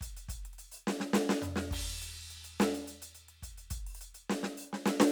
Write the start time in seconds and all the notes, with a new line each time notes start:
0.01 closed hi-hat, kick
0.17 closed hi-hat
0.29 closed hi-hat, kick
0.45 closed hi-hat
0.53 open hi-hat
0.59 open hi-hat
0.72 open hi-hat
0.87 snare
1.00 snare
1.14 snare
1.30 snare
1.42 hi-hat pedal, mid tom
1.56 snare
1.71 kick, crash
1.77 kick
1.91 closed hi-hat
2.02 closed hi-hat
2.30 closed hi-hat
2.44 closed hi-hat
2.60 snare
2.75 closed hi-hat
2.88 closed hi-hat
3.02 closed hi-hat
3.15 closed hi-hat
3.29 closed hi-hat
3.43 closed hi-hat, kick
3.58 closed hi-hat
3.71 closed hi-hat, kick
3.87 open hi-hat
3.95 open hi-hat
4.01 closed hi-hat
4.15 closed hi-hat
4.30 snare
4.43 snare
4.57 open hi-hat
4.62 hi-hat pedal
4.73 snare
4.86 snare
5.00 snare
5.07 hi-hat pedal